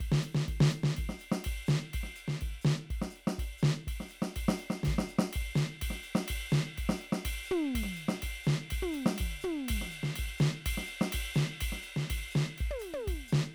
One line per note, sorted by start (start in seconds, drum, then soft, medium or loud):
0.01 kick soft
0.01 ride bell medium
0.07 kick soft
0.12 snare loud
0.22 hi-hat pedal medium
0.22 ride soft
0.35 snare medium
0.49 kick soft
0.49 ride bell medium
0.54 kick soft
0.61 snare loud
0.70 hi-hat pedal medium
0.70 ride soft
0.84 snare medium
0.97 kick soft
0.97 ride bell medium
1.10 snare soft
1.20 hi-hat pedal medium
1.20 ride soft
1.32 snare medium
1.45 kick soft
1.45 ride bell medium
1.53 kick soft
1.67 snare loud
1.67 hi-hat pedal medium
1.94 kick soft
1.94 ride bell medium
2.04 snare soft
2.16 hi-hat pedal medium
2.16 ride soft
2.28 snare medium
2.41 kick soft
2.41 ride medium
2.48 kick soft
2.62 snare loud
2.62 hi-hat pedal medium
2.91 kick soft
2.91 ride soft
3.02 snare medium
3.11 hi-hat pedal medium
3.16 ride soft
3.28 snare medium
3.39 kick soft
3.39 ride bell medium
3.59 hi-hat pedal medium
3.63 snare loud
3.88 kick soft
3.88 ride medium
4.01 snare soft
4.09 hi-hat pedal medium
4.09 ride soft
4.23 snare medium
4.36 kick soft
4.36 ride bell medium
4.42 kick soft
4.49 snare medium
4.58 hi-hat pedal medium
4.58 ride soft
4.71 snare medium
4.84 kick soft
4.84 snare medium
4.84 ride medium
4.94 kick soft
4.99 snare medium
5.09 hi-hat pedal medium
5.19 snare medium
5.33 kick soft
5.33 ride bell medium
5.42 kick soft
5.56 snare loud
5.56 hi-hat pedal medium
5.82 kick soft
5.82 ride bell loud
5.88 kick soft
5.88 snare soft
6.04 hi-hat pedal medium
6.04 ride soft
6.16 snare medium
6.28 kick soft
6.28 ride bell loud
6.36 kick soft
6.50 snare loud
6.50 hi-hat pedal medium
6.78 kick soft
6.78 ride medium
6.84 kick soft
6.90 snare medium
6.97 hi-hat pedal medium
7.02 ride soft
7.13 snare medium
7.26 kick soft
7.26 ride loud
7.31 kick soft
7.46 hi-hat pedal medium
7.51 floor tom loud
7.75 kick soft
7.75 ride loud
7.84 snare soft
7.96 hi-hat pedal medium
7.96 ride soft
8.09 snare medium
8.23 kick soft
8.23 ride loud
8.44 snare loud
8.44 hi-hat pedal medium
8.71 kick soft
8.71 ride medium
8.78 kick soft
8.82 floor tom loud
8.92 hi-hat pedal medium
8.92 ride medium
9.06 snare medium
9.18 kick soft
9.18 ride loud
9.27 kick soft
9.42 hi-hat pedal medium
9.42 floor tom loud
9.69 kick soft
9.69 ride loud
9.77 kick soft
9.82 snare soft
9.92 hi-hat pedal medium
9.92 ride soft
10.04 snare medium
10.16 kick soft
10.16 ride loud
10.39 snare loud
10.39 hi-hat pedal medium
10.66 kick soft
10.66 ride bell loud
10.73 kick soft
10.78 snare soft
10.86 hi-hat pedal medium
10.86 ride soft
11.02 snare medium
11.08 hi-hat pedal soft
11.13 kick soft
11.13 ride bell loud
11.34 snare loud
11.34 hi-hat pedal medium
11.56 hi-hat pedal soft
11.61 kick soft
11.61 ride bell loud
11.68 kick soft
11.73 snare soft
11.83 hi-hat pedal medium
11.83 ride soft
11.97 snare medium
12.10 kick soft
12.10 ride bell loud
12.31 hi-hat pedal medium
12.36 snare loud
12.58 kick soft
12.58 ride bell medium
12.68 kick soft
12.68 high tom medium
12.80 hi-hat pedal medium
12.80 ride medium
12.94 closed hi-hat soft
12.94 high tom medium
13.08 kick soft
13.08 ride bell medium
13.14 kick soft
13.29 hi-hat pedal medium
13.33 snare loud